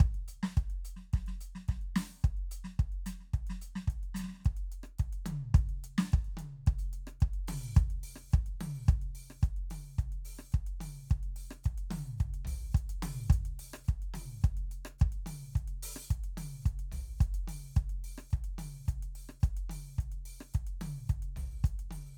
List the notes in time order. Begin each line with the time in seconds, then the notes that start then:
0.01 kick, closed hi-hat
0.15 closed hi-hat
0.29 closed hi-hat
0.44 snare
0.58 kick, closed hi-hat
0.71 closed hi-hat
0.86 closed hi-hat
0.97 snare
1.14 kick, snare, closed hi-hat
1.27 snare, closed hi-hat
1.42 closed hi-hat, kick
1.56 snare
1.69 kick, snare, closed hi-hat
1.82 closed hi-hat
1.95 open hi-hat, kick, snare
2.01 snare
2.22 kick, closed hi-hat, hi-hat pedal
2.38 closed hi-hat
2.52 closed hi-hat
2.65 snare
2.80 kick, closed hi-hat
2.93 closed hi-hat
3.07 closed hi-hat, snare
3.21 snare
3.34 kick, closed hi-hat
3.48 snare, closed hi-hat
3.62 closed hi-hat
3.76 snare
3.88 kick, closed hi-hat
4.04 closed hi-hat
4.15 closed hi-hat, snare
4.20 snare
4.24 snare
4.29 snare
4.35 snare
4.41 snare
4.46 kick, snare, closed hi-hat
4.58 closed hi-hat
4.73 closed hi-hat
4.84 cross-stick
4.99 kick, closed hi-hat
5.14 closed hi-hat
5.27 kick, closed hi-hat, high tom
5.55 kick, closed hi-hat
5.70 closed hi-hat
5.85 kick, closed hi-hat
5.99 snare
6.13 kick, closed hi-hat
6.25 closed hi-hat
6.38 kick, closed hi-hat, high tom
6.67 kick, closed hi-hat
6.79 closed hi-hat
6.94 closed hi-hat
7.08 cross-stick
7.21 kick, closed hi-hat
7.34 closed hi-hat
7.49 open hi-hat, high tom
7.75 kick, closed hi-hat, hi-hat pedal
7.91 closed hi-hat
8.04 open hi-hat
8.17 cross-stick
8.31 kick, closed hi-hat, hi-hat pedal
8.47 closed hi-hat
8.61 open hi-hat, high tom
8.87 kick, closed hi-hat, hi-hat pedal
9.02 closed hi-hat
9.16 open hi-hat
9.31 cross-stick
9.42 kick, closed hi-hat, hi-hat pedal
9.57 closed hi-hat
9.71 open hi-hat, high tom
9.98 kick, closed hi-hat, hi-hat pedal
10.13 closed hi-hat
10.26 open hi-hat
10.40 cross-stick
10.52 kick, closed hi-hat, hi-hat pedal
10.67 closed hi-hat
10.81 open hi-hat, high tom
11.09 kick, closed hi-hat, hi-hat pedal
11.24 closed hi-hat
11.37 open hi-hat
11.52 cross-stick
11.64 kick, closed hi-hat, hi-hat pedal
11.79 closed hi-hat
11.92 open hi-hat, high tom
12.18 kick, closed hi-hat, hi-hat pedal
12.35 closed hi-hat
12.46 floor tom, open hi-hat
12.73 kick, hi-hat pedal
12.78 closed hi-hat
12.90 closed hi-hat
13.03 open hi-hat, high tom
13.29 kick, hi-hat pedal
13.33 closed hi-hat
13.46 closed hi-hat
13.60 open hi-hat
13.74 cross-stick
13.85 hi-hat pedal
13.89 kick, closed hi-hat
14.03 closed hi-hat
14.15 open hi-hat, high tom
14.42 kick, closed hi-hat, hi-hat pedal
14.58 closed hi-hat
14.72 open hi-hat
14.86 cross-stick
14.99 kick, closed hi-hat, hi-hat pedal
15.13 closed hi-hat
15.27 open hi-hat, high tom
15.54 kick, hi-hat pedal
15.58 closed hi-hat
15.68 closed hi-hat
15.83 open hi-hat
15.97 cross-stick
16.08 kick, closed hi-hat, hi-hat pedal
16.25 closed hi-hat
16.38 open hi-hat, high tom
16.63 kick, hi-hat pedal
16.67 closed hi-hat
16.80 closed hi-hat
16.93 floor tom, open hi-hat
17.19 kick, closed hi-hat, hi-hat pedal
17.35 closed hi-hat
17.49 open hi-hat, high tom
17.76 kick, closed hi-hat, hi-hat pedal
17.90 closed hi-hat
18.05 open hi-hat
18.19 cross-stick
18.31 kick, hi-hat pedal, open hi-hat
18.45 closed hi-hat
18.59 open hi-hat, high tom
18.86 kick, closed hi-hat, hi-hat pedal
19.03 closed hi-hat
19.16 open hi-hat
19.30 cross-stick
19.41 kick, closed hi-hat, hi-hat pedal
19.58 closed hi-hat
19.70 open hi-hat, high tom
19.97 kick, hi-hat pedal
20.01 closed hi-hat
20.13 closed hi-hat
20.26 open hi-hat
20.32 kick
20.41 cross-stick
20.53 kick, closed hi-hat, hi-hat pedal
20.68 closed hi-hat
20.82 open hi-hat, high tom
21.08 kick, closed hi-hat, hi-hat pedal
21.23 closed hi-hat
21.37 floor tom, open hi-hat
21.64 kick, closed hi-hat, hi-hat pedal
21.80 closed hi-hat
21.92 open hi-hat, high tom